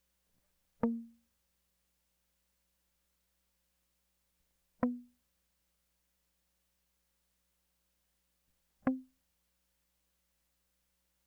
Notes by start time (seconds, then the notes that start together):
0.83 A#3
4.83 B3
8.87 C4